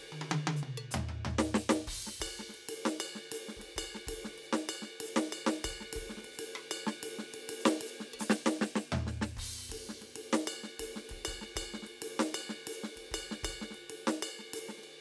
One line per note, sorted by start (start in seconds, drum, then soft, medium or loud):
0.01 cross-stick soft
0.12 high tom medium
0.21 high tom medium
0.29 hi-hat pedal soft
0.29 high tom loud
0.47 high tom loud
0.56 hi-hat pedal medium
0.63 mid tom medium
0.77 percussion medium
0.91 hi-hat pedal loud
0.91 floor tom loud
1.09 floor tom medium
1.25 floor tom loud
1.38 snare loud
1.54 snare loud
1.69 snare loud
1.87 kick soft
1.87 crash loud
2.07 snare soft
2.20 kick soft
2.20 ride bell loud
2.39 snare soft
2.49 snare soft
2.54 ride medium
2.69 ride loud
2.85 snare medium
2.85 hi-hat pedal medium
3.00 ride bell loud
3.15 snare soft
3.32 hi-hat pedal medium
3.32 ride loud
3.48 snare soft
3.57 kick soft
3.57 snare soft
3.62 ride medium
3.76 kick soft
3.76 hi-hat pedal soft
3.76 ride bell loud
3.95 snare soft
4.07 kick soft
4.07 ride loud
4.25 snare soft
4.38 ride medium
4.43 hi-hat pedal soft
4.53 snare loud
4.69 ride bell loud
4.82 snare soft
5.00 ride loud
5.05 hi-hat pedal medium
5.16 snare loud
5.32 ride bell loud
5.46 snare loud
5.64 kick soft
5.64 hi-hat pedal medium
5.64 ride bell loud
5.70 kick soft
5.80 snare soft
5.93 kick soft
5.93 ride loud
6.09 snare soft
6.17 snare soft
6.21 snare soft
6.21 ride medium
6.33 hi-hat pedal soft
6.39 ride loud
6.55 cross-stick medium
6.71 ride bell loud
6.87 snare medium
7.03 hi-hat pedal medium
7.03 ride loud
7.18 snare soft
7.31 hi-hat pedal soft
7.31 ride medium
7.49 ride loud
7.60 hi-hat pedal medium
7.65 snare loud
7.81 ride loud
7.86 hi-hat pedal medium
8.00 snare soft
8.13 kick soft
8.13 percussion medium
8.19 snare medium
8.19 hi-hat pedal loud
8.30 snare loud
8.46 snare loud
8.61 snare medium
8.75 snare medium
8.92 floor tom loud
9.07 snare medium
9.21 snare medium
9.34 kick soft
9.34 hi-hat pedal soft
9.34 crash loud
9.58 cross-stick soft
9.69 kick soft
9.69 ride loud
9.89 snare soft
10.01 snare soft
10.01 ride medium
10.16 ride loud
10.33 snare loud
10.33 hi-hat pedal medium
10.47 ride bell loud
10.63 snare soft
10.79 kick soft
10.79 hi-hat pedal medium
10.79 ride loud
10.96 snare soft
11.09 kick soft
11.09 ride medium
11.25 kick soft
11.25 ride bell loud
11.41 snare soft
11.56 kick soft
11.56 ride bell loud
11.74 snare soft
11.82 snare soft
11.87 ride medium
12.02 ride loud
12.19 snare loud
12.19 hi-hat pedal loud
12.34 ride bell loud
12.49 snare medium
12.67 ride loud
12.72 hi-hat pedal medium
12.83 snare medium
12.96 kick soft
12.96 ride medium
13.11 kick soft
13.11 hi-hat pedal soft
13.11 ride bell loud
13.31 snare medium
13.43 kick soft
13.43 ride bell loud
13.61 snare soft
13.71 snare soft
13.71 ride medium
13.90 ride loud
14.07 snare loud
14.07 hi-hat pedal medium
14.22 ride bell loud
14.39 snare soft
14.54 hi-hat pedal medium
14.54 ride loud
14.69 snare soft
14.77 snare soft
14.83 ride bell soft